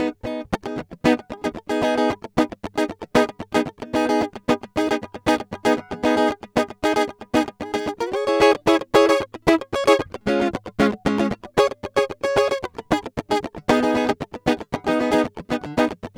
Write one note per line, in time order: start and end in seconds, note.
0.01 0.15 B3
0.01 0.17 D#4
0.01 0.16 G#4
0.25 0.47 B3
0.25 0.48 D#4
0.25 0.47 G#4
0.55 0.86 D#4
0.65 0.86 B3
0.65 0.87 G#4
1.07 1.19 B3
1.07 1.19 D#4
1.71 1.83 B3
1.71 1.83 D#4
1.71 1.84 G#4
1.83 2.00 B3
1.83 2.00 D#4
1.83 1.97 G#4
1.99 2.12 B3
1.99 2.19 D#4
1.99 2.19 G#4
2.12 2.19 B3
2.39 2.49 B3
2.39 2.49 D#4
2.39 2.51 G#4
2.79 2.87 B3
2.79 2.89 D#4
2.79 2.90 G#4
3.16 3.27 B3
3.16 3.27 D#4
3.16 3.28 G#4
3.56 3.65 B3
3.56 3.66 D#4
3.56 3.67 G#4
3.85 3.94 B3
3.95 4.11 B3
3.95 4.09 D#4
3.95 4.08 G#4
4.11 4.31 B3
4.11 4.31 D#4
4.11 4.24 G#4
4.50 4.60 B3
4.50 4.60 D#4
4.50 4.60 G4
4.77 4.93 B3
4.77 4.91 D#4
4.77 4.92 G#4
4.92 5.00 B3
4.92 5.01 D#4
4.92 5.02 G#4
5.28 5.39 B3
5.28 5.39 D#4
5.28 5.38 G#4
5.66 5.78 B3
5.66 5.79 D#4
5.66 5.80 G#4
5.92 6.08 G#4
6.05 6.17 B3
6.05 6.20 D#4
6.05 6.18 G#4
6.18 6.38 B3
6.18 6.38 D#4
6.18 6.39 G#4
6.58 6.68 B3
6.58 6.67 D#4
6.58 6.68 G#4
6.85 6.99 D#4
6.85 6.96 G#4
6.98 7.06 B3
6.98 7.08 D#4
6.98 7.08 G#4
7.35 7.46 B3
7.35 7.46 D#4
7.35 7.45 G#4
7.75 7.96 D#4
7.75 7.84 G#4
7.85 7.97 G#4
8.15 8.29 G#4
8.15 8.29 C#5
8.29 8.41 E4
8.29 8.43 G#4
8.29 8.44 C#5
8.42 8.56 E4
8.42 8.60 G#4
8.42 8.54 C#5
8.69 8.80 E4
8.69 8.80 G#4
8.69 8.87 C#5
8.95 9.12 E4
8.95 9.12 G#4
8.95 9.11 C#5
9.11 9.18 E4
9.11 9.27 G#4
9.11 9.23 C#5
9.49 9.61 E4
9.49 9.59 G#4
9.75 9.89 C#5
9.89 9.97 E4
9.89 9.98 G#4
9.89 10.01 C#5
10.28 10.43 G#3
10.28 10.43 C#4
10.28 10.43 F4
10.43 10.51 G#3
10.43 10.52 C#4
10.43 10.53 F4
10.81 10.99 G#3
10.81 10.92 C#4
10.81 10.91 F4
11.07 11.22 G#3
11.07 11.22 C#4
11.22 11.39 G#3
11.22 11.31 C#4
11.59 11.76 G#4
11.59 11.70 C#5
11.97 12.08 G#4
11.97 12.09 C#5
12.25 12.38 G#4
12.25 12.38 C#5
12.38 12.49 G#4
12.38 12.51 C#5
12.53 12.63 C#5
12.93 13.01 D#4
12.93 13.03 G#4
13.32 13.42 D#4
13.32 13.43 G#4
13.71 13.84 B3
13.71 13.81 D#4
13.71 13.84 G#4
13.85 13.96 B3
13.85 13.96 D#4
13.85 13.96 G#4
13.96 14.18 B3
13.96 14.17 D#4
13.96 14.06 G#4
14.48 14.58 B3
14.48 14.58 D#4
14.48 14.58 G#4
14.88 15.01 B3
14.88 15.01 D#4
14.88 15.10 G#4
15.01 15.13 B3
15.01 15.14 D#4
15.13 15.32 B3
15.13 15.32 D#4
15.13 15.21 G#4
15.21 15.42 G#4
15.52 15.61 B3
15.52 15.61 D#4
15.52 15.61 G4
15.79 15.90 B3
15.79 15.90 D#4
15.79 15.88 G#4